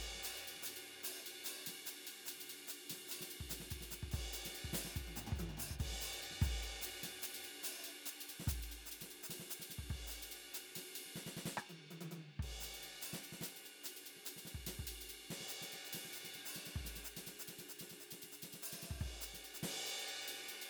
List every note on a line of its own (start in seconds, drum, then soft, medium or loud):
0.01 hi-hat pedal soft
0.01 ride soft
0.15 snare soft
0.23 snare soft
0.23 hi-hat pedal loud
0.23 ride loud
0.37 ride medium
0.42 hi-hat pedal soft
0.47 ride medium
0.56 snare soft
0.63 hi-hat pedal loud
0.63 ride loud
0.76 ride medium
0.81 hi-hat pedal soft
1.04 hi-hat pedal loud
1.04 ride loud
1.22 hi-hat pedal soft
1.26 ride medium
1.44 hi-hat pedal loud
1.44 ride loud
1.63 hi-hat pedal soft
1.63 ride loud
1.67 snare soft
1.86 hi-hat pedal loud
1.86 ride medium
2.05 hi-hat pedal soft
2.05 ride medium
2.26 hi-hat pedal medium
2.26 ride loud
2.38 snare soft
2.38 ride medium
2.46 hi-hat pedal soft
2.46 ride medium
2.65 snare soft
2.65 hi-hat pedal loud
2.70 ride medium
2.86 hi-hat pedal soft
2.86 ride loud
2.91 snare soft
3.09 hi-hat pedal medium
3.09 ride loud
3.21 snare soft
3.21 ride medium
3.26 hi-hat pedal soft
3.30 ride medium
3.40 kick soft
3.50 snare soft
3.50 hi-hat pedal loud
3.50 ride loud
3.60 snare soft
3.69 kick soft
3.69 hi-hat pedal soft
3.69 ride medium
3.81 snare soft
3.81 ride medium
3.91 snare soft
3.91 hi-hat pedal loud
3.91 ride medium
4.03 kick soft
4.11 kick soft
4.11 hi-hat pedal medium
4.11 ride medium
4.24 snare soft
4.33 hi-hat pedal medium
4.33 ride medium
4.45 snare soft
4.45 ride medium
4.52 hi-hat pedal soft
4.52 ride medium
4.64 kick soft
4.73 snare medium
4.73 hi-hat pedal loud
4.73 ride medium
4.85 snare soft
4.94 kick soft
4.94 hi-hat pedal soft
4.94 ride medium
5.07 high tom soft
5.16 floor tom medium
5.16 hi-hat pedal loud
5.27 floor tom medium
5.32 kick soft
5.32 hi-hat pedal soft
5.39 high tom medium
5.49 floor tom soft
5.57 floor tom medium
5.57 hi-hat pedal loud
5.71 kick soft
5.79 kick soft
5.79 hi-hat pedal soft
5.79 ride medium
5.92 snare soft
6.01 hi-hat pedal loud
6.01 ride medium
6.13 ride medium
6.22 hi-hat pedal soft
6.22 ride medium
6.31 snare soft
6.42 kick medium
6.42 hi-hat pedal medium
6.42 ride medium
6.60 hi-hat pedal soft
6.60 ride medium
6.82 hi-hat pedal loud
6.82 ride loud
7.03 snare soft
7.03 ride loud
7.22 hi-hat pedal loud
7.22 ride loud
7.34 snare soft
7.34 ride medium
7.44 ride medium
7.63 hi-hat pedal loud
7.63 ride loud
7.80 snare soft
7.80 ride medium
8.06 hi-hat pedal loud
8.06 ride medium
8.21 ride medium
8.29 ride medium
8.40 snare soft
8.47 kick soft
8.47 hi-hat pedal loud
8.47 ride medium
8.62 ride medium
8.71 ride medium
8.86 hi-hat pedal medium
8.91 ride medium
9.01 snare soft
9.01 ride medium
9.10 ride medium
9.23 hi-hat pedal loud
9.30 snare soft
9.30 ride loud
9.40 snare soft
9.50 hi-hat pedal loud
9.50 ride medium
9.60 snare soft
9.60 ride medium
9.70 snare soft
9.70 ride medium
9.79 kick soft
9.90 kick soft
9.90 ride medium
10.00 snare soft
10.07 hi-hat pedal medium
10.11 ride medium
10.22 ride medium
10.31 ride medium
10.54 hi-hat pedal loud
10.54 ride medium
10.76 snare soft
10.76 ride loud
10.95 ride loud
11.06 snare soft
11.16 snare soft
11.26 snare soft
11.37 snare medium
11.46 snare medium
11.57 cross-stick soft
11.69 high tom medium
11.91 high tom medium
12.01 high tom medium
12.11 high tom medium
12.39 kick soft
12.39 ride medium
12.61 hi-hat pedal medium
12.61 ride medium
12.74 ride medium
12.83 ride medium
12.95 snare soft
13.02 hi-hat pedal medium
13.02 ride medium
13.13 snare medium
13.13 ride medium
13.24 ride medium
13.32 snare soft
13.41 snare soft
13.41 hi-hat pedal medium
13.41 ride medium
13.56 ride medium
13.62 hi-hat pedal soft
13.62 ride medium
13.84 hi-hat pedal medium
13.84 ride medium
13.96 ride medium
14.06 ride medium
14.17 snare soft
14.25 hi-hat pedal medium
14.25 ride medium
14.36 snare soft
14.36 ride medium
14.45 snare soft
14.45 ride medium
14.55 kick soft
14.67 snare soft
14.67 ride loud
14.79 kick soft
14.87 ride loud
15.01 ride medium
15.09 ride medium
15.27 snare medium
15.27 hi-hat pedal soft
15.27 ride medium
15.41 snare soft
15.48 hi-hat pedal medium
15.48 ride medium
15.62 snare soft
15.62 ride medium
15.72 snare soft
15.72 ride medium
15.85 hi-hat pedal medium
15.93 snare soft
15.93 ride loud
16.05 snare soft
16.13 hi-hat pedal medium
16.13 ride medium
16.25 snare soft
16.25 ride medium
16.34 snare soft
16.34 ride medium
16.45 hi-hat pedal loud
16.55 snare soft
16.55 ride medium
16.65 snare soft
16.65 ride medium
16.76 kick soft
16.85 snare soft
16.85 ride medium
16.96 snare soft
16.96 ride medium
17.05 hi-hat pedal loud
17.17 snare soft
17.17 ride medium
17.27 snare soft
17.27 ride medium
17.39 hi-hat pedal loud
17.48 snare soft
17.48 ride medium
17.59 snare soft
17.59 ride medium
17.69 hi-hat pedal medium
17.79 snare soft
17.79 ride medium
17.89 snare soft
17.89 ride medium
18.00 hi-hat pedal medium
18.11 snare soft
18.11 ride medium
18.22 snare soft
18.22 ride medium
18.32 hi-hat pedal medium
18.42 snare soft
18.42 ride medium
18.53 snare soft
18.53 ride medium
18.63 hi-hat pedal loud
18.72 snare soft
18.72 ride medium
18.82 snare soft
18.82 ride medium
18.91 kick soft
19.00 kick soft
19.00 ride medium
19.14 snare soft
19.21 hi-hat pedal loud
19.21 ride medium
19.34 snare soft
19.34 ride medium
19.44 ride medium
19.54 hi-hat pedal medium
19.63 snare medium
19.63 ride loud
19.86 hi-hat pedal medium
19.86 ride medium
19.99 ride medium
20.08 ride medium
20.22 hi-hat pedal soft
20.28 ride loud
20.49 ride medium
20.62 ride medium